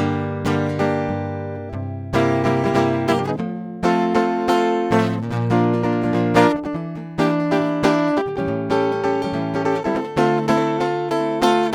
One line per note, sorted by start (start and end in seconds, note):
0.01 0.46 G2
0.01 0.47 D3
0.01 0.47 G3
0.01 0.48 A#3
0.01 0.49 D4
0.01 0.43 G4
0.45 1.10 G2
0.45 1.56 D3
0.45 0.71 G3
0.45 0.71 A#3
0.45 0.51 G4
0.49 0.81 D4
0.71 0.83 G3
0.71 0.82 A#3
0.81 1.61 G3
0.81 1.75 A#3
0.81 1.71 D4
0.81 2.18 G4
1.10 1.75 G2
1.57 1.67 C3
1.71 2.15 C3
1.71 2.14 E4
1.75 1.80 G2
1.80 2.14 G2
2.15 2.72 G2
2.15 2.48 C3
2.15 2.48 G3
2.15 2.48 A#3
2.15 2.47 E4
2.15 2.46 G4
2.46 2.67 C3
2.46 2.67 G3
2.46 2.66 A#3
2.46 2.66 E4
2.46 2.78 G4
2.66 2.74 C3
2.66 2.77 G3
2.66 2.77 A#3
2.66 2.78 E4
2.75 3.27 G2
2.75 3.25 C3
2.75 3.18 G3
2.75 3.11 A#3
2.75 3.09 E4
2.75 3.08 G4
3.10 3.20 A#3
3.10 3.18 E4
3.10 3.25 G4
3.20 3.40 F#3
3.20 3.31 B3
3.20 3.31 D4
3.25 3.84 A2
3.25 3.37 C#3
3.31 3.38 B3
3.31 3.39 D#4
3.41 3.84 F3
3.41 3.82 A3
3.85 4.17 F3
3.85 4.18 A3
3.85 4.17 C4
3.85 4.17 F4
3.85 4.16 A4
4.16 4.31 F3
4.16 4.44 A3
4.16 4.48 C4
4.16 4.50 F4
4.16 4.51 A4
4.45 4.92 A3
4.50 4.94 C4
4.50 4.94 F4
4.50 5.24 A4
4.92 5.23 A2
4.92 5.23 F3
4.92 5.20 A3
4.92 5.21 C4
4.92 5.17 F4
5.23 5.33 A#2
5.23 5.40 A#4
5.32 5.52 A#2
5.32 5.51 F3
5.52 6.07 A#2
5.52 6.07 F3
5.52 5.75 A#3
5.52 5.75 D4
5.52 5.76 F4
5.52 5.83 A#4
5.75 5.87 A#3
5.75 5.87 D4
5.75 5.85 F4
5.86 5.95 A#3
5.86 6.05 D4
5.86 6.04 F4
5.86 6.38 A#4
5.95 6.06 A#3
6.04 6.15 A#2
6.04 6.15 F3
6.04 6.16 A#3
6.04 6.16 D4
6.04 6.14 F4
6.14 6.35 A#2
6.14 6.36 F3
6.14 6.37 A#3
6.14 6.38 D4
6.14 6.38 F4
6.36 6.51 A#2
6.36 6.52 F3
6.36 6.53 A#3
6.36 6.58 D4
6.36 6.57 F4
6.36 6.58 A#4
6.56 6.68 E3
6.56 6.65 D4
6.67 6.76 E3
6.67 6.77 D4
6.76 6.97 E3
6.76 6.98 D4
6.97 7.19 E3
6.97 7.20 D4
7.20 7.55 E3
7.20 7.38 A#3
7.20 7.42 D4
7.20 7.41 E4
7.20 7.38 G4
7.42 7.54 D4
7.42 7.51 E4
7.53 7.84 E3
7.53 7.64 A#3
7.53 7.85 D4
7.53 7.86 E4
7.53 7.66 G4
7.64 7.72 A#3
7.85 8.16 E3
7.85 8.04 A#3
7.85 8.23 D4
7.85 8.08 E4
7.85 8.00 G4
8.09 8.19 E4
8.19 8.33 F#4
8.19 8.37 G4
8.28 8.34 A2
8.28 8.39 D3
8.37 8.50 E3
8.37 8.59 G3
8.37 8.72 C#4
8.37 8.73 G4
8.41 8.49 A2
8.50 9.34 A2
8.50 9.26 E3
8.71 8.93 G3
8.71 8.93 C#4
8.71 9.05 G4
8.71 9.04 A4
8.93 9.07 G3
8.93 9.06 C#4
9.05 9.15 G3
9.05 9.25 C#4
9.05 9.23 G4
9.05 9.57 A4
9.15 9.25 G3
9.23 9.35 E3
9.23 9.36 G3
9.23 9.38 C#4
9.23 9.54 G4
9.35 9.65 A2
9.35 9.85 E3
9.35 9.55 G3
9.35 9.55 C#4
9.55 9.87 G3
9.55 9.68 C#4
9.55 9.66 G4
9.55 9.67 A4
9.67 9.77 C#4
9.67 9.83 G4
9.67 9.84 A4
9.77 9.84 C#4
9.85 9.97 G3
9.85 9.97 C4
9.85 9.97 E4
9.85 9.99 A4
9.89 10.16 D3
9.97 10.05 G3
9.97 10.12 C4
9.97 10.07 E4
9.97 10.20 A4
10.07 10.19 A3
10.18 11.75 D3
10.18 10.49 A3
10.18 10.50 C4
10.18 10.43 F4
10.18 10.49 A4
10.49 10.59 A3
10.49 10.59 C4
10.49 10.59 E4
10.49 10.83 A4
10.59 10.79 A3
10.59 10.82 C4
10.59 10.81 E4
10.82 11.14 A3
10.82 10.94 C4
10.82 11.13 F4
10.82 11.10 A4
11.12 11.43 C4
11.12 11.44 E4
11.12 11.45 A4
11.22 11.43 A3
11.44 11.75 A3
11.44 11.62 C4
11.44 11.71 F4
11.44 11.65 A4
11.65 11.75 A4